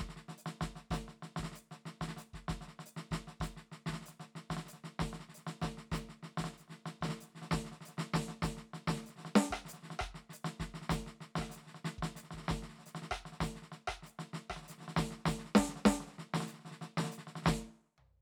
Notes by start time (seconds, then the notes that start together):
0.01 kick
0.09 snare
0.17 snare
0.29 snare
0.38 hi-hat pedal
0.46 snare
0.61 kick, snare
0.76 snare
0.91 kick, snare, hi-hat pedal
1.08 snare
1.23 snare
1.37 kick, snare
1.43 snare
1.52 snare, hi-hat pedal
1.71 snare
1.86 snare
2.01 kick, snare
2.08 snare
2.17 snare, hi-hat pedal
2.34 kick, snare
2.49 kick, snare
2.61 snare
2.68 snare
2.79 snare
2.86 hi-hat pedal
2.97 snare
3.11 kick, snare
3.28 snare
3.41 kick, snare, hi-hat pedal
3.57 snare
3.72 snare
3.86 kick, snare
3.93 snare
4.02 snare
4.06 snare, hi-hat pedal
4.20 snare
4.36 snare
4.50 kick, snare
4.57 snare
4.66 snare, hi-hat pedal
4.73 snare
4.84 snare
5.00 kick, snare
5.09 kick
5.13 snare
5.20 snare
5.29 snare
5.35 snare, hi-hat pedal
5.47 snare
5.62 kick, snare
5.78 snare
5.92 kick, snare, hi-hat pedal
6.09 snare
6.23 snare
6.38 kick, snare
6.44 snare
6.52 snare
6.58 snare, hi-hat pedal
6.68 snare
6.86 snare
7.02 kick, snare
7.09 snare
7.15 snare
7.21 snare, hi-hat pedal
7.29 snare
7.33 snare
7.35 snare
7.42 snare
7.51 kick, snare
7.59 kick
7.65 snare
7.72 snare
7.81 snare
7.86 snare, hi-hat pedal
7.98 snare
8.14 kick, snare
8.28 snare
8.43 kick, snare, hi-hat pedal
8.57 snare
8.74 snare
8.88 kick, snare
8.96 snare
9.01 snare
9.06 snare, hi-hat pedal
9.16 snare
9.18 snare
9.25 snare
9.36 snare
9.51 kick, cross-stick
9.65 snare, hi-hat pedal
9.74 snare
9.80 snare
9.83 snare
9.91 snare
9.99 kick, cross-stick
10.15 snare
10.30 snare, hi-hat pedal
10.45 snare
10.60 kick, snare
10.74 snare
10.82 snare
10.90 kick, snare, hi-hat pedal
10.99 kick
11.07 snare
11.21 snare
11.36 kick, snare
11.42 cross-stick
11.50 snare, hi-hat pedal
11.57 snare
11.62 snare
11.67 snare
11.75 snare
11.85 snare
11.98 kick
12.03 snare
12.16 snare, hi-hat pedal
12.24 snare
12.31 kick, snare
12.37 snare
12.42 snare
12.49 kick, snare
12.63 snare
12.69 snare
12.73 snare
12.79 snare
12.86 snare, hi-hat pedal
12.95 snare
13.02 snare
13.11 kick, cross-stick
13.26 snare
13.33 snare
13.41 kick, snare, hi-hat pedal
13.56 snare
13.62 snare
13.72 snare
13.88 kick, cross-stick
14.03 snare, hi-hat pedal
14.19 snare
14.34 snare
14.50 kick, cross-stick
14.57 snare
14.62 snare
14.68 snare, hi-hat pedal
14.78 snare
14.80 snare
14.97 kick, snare
15.11 snare
15.19 snare
15.26 kick, snare, hi-hat pedal
15.39 snare
15.45 snare
15.51 snare
15.55 kick, snare
15.69 snare
15.76 snare
15.81 snare
15.86 kick, snare, hi-hat pedal
16.01 snare
16.07 snare
16.11 snare
16.19 snare
16.34 snare
16.41 snare
16.47 snare, hi-hat pedal
16.53 snare
16.60 snare
16.65 snare
16.72 snare
16.82 snare
16.98 snare
17.04 snare
17.10 snare, hi-hat pedal
17.18 snare
17.27 snare
17.36 snare
17.43 snare
17.46 kick, snare
17.57 kick
17.98 floor tom